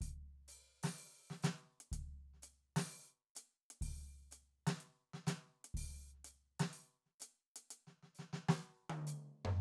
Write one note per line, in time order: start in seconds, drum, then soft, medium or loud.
0.01 kick soft
0.01 open hi-hat soft
0.48 hi-hat pedal soft
0.83 snare medium
0.83 open hi-hat medium
0.97 open hi-hat soft
1.30 snare soft
1.43 snare medium
1.43 closed hi-hat medium
1.43 hi-hat pedal soft
1.80 closed hi-hat soft
1.92 kick soft
1.92 open hi-hat medium
2.34 snare soft
2.43 closed hi-hat soft
2.43 hi-hat pedal soft
2.76 snare medium
2.76 open hi-hat medium
2.89 open hi-hat soft
3.35 closed hi-hat medium
3.35 hi-hat pedal soft
3.70 closed hi-hat soft
3.81 kick soft
3.81 open hi-hat soft
4.32 closed hi-hat soft
4.32 hi-hat pedal soft
4.67 snare medium
4.67 open hi-hat medium
4.80 open hi-hat soft
5.14 snare soft
5.27 snare medium
5.27 closed hi-hat medium
5.27 hi-hat pedal soft
5.65 closed hi-hat soft
5.74 kick soft
5.74 open hi-hat medium
6.14 snare soft
6.25 hi-hat pedal soft
6.25 open hi-hat soft
6.60 snare medium
6.60 open hi-hat medium
6.73 open hi-hat soft
7.06 snare soft
7.20 closed hi-hat medium
7.20 hi-hat pedal soft
7.56 closed hi-hat medium
7.71 open hi-hat medium
7.87 snare soft
8.03 snare soft
8.15 snare soft
8.15 hi-hat pedal soft
8.33 snare soft
8.49 snare medium
8.90 high tom medium
9.07 hi-hat pedal medium
9.45 floor tom medium